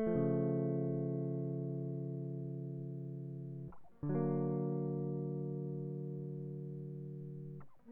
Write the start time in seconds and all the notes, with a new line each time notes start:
0.00 A3
0.08 F3
0.17 C#3
4.04 D3
4.10 F#3
4.15 A#3